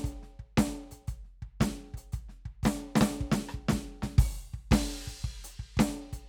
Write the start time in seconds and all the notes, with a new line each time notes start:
0.01 kick, snare
0.06 closed hi-hat, snare
0.23 snare
0.40 kick
0.58 closed hi-hat, kick, snare
0.72 snare
0.92 closed hi-hat, kick
1.08 closed hi-hat, kick
1.24 snare
1.42 kick
1.61 closed hi-hat, kick, snare
1.75 snare
1.94 closed hi-hat, kick
2.13 closed hi-hat, kick
2.29 snare
2.46 kick
2.63 closed hi-hat, kick, snare
2.96 snare
3.01 kick, snare
3.21 kick
3.32 snare
3.49 cross-stick
3.54 kick
3.69 kick, snare
4.03 kick, snare
4.19 open hi-hat, kick
4.54 kick
4.72 kick, snare, hi-hat pedal, crash
5.08 closed hi-hat, kick
5.24 kick
5.42 closed hi-hat, snare
5.60 kick
5.77 closed hi-hat, kick, snare
5.93 snare
6.13 closed hi-hat, kick